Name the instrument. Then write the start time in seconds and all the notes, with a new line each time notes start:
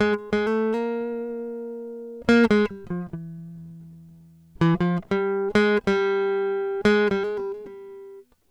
acoustic guitar
0.02 G#3
0.34 G#3
0.49 A3
0.76 A#3
2.30 A#3
2.52 G#3
2.67 G3
2.93 F3
3.15 E3
4.63 E3
4.82 F3
5.13 G3
5.57 G#3
5.89 G3
6.87 G#3
7.14 G3
7.25 G#3
7.39 G3
7.54 G#3
7.69 G3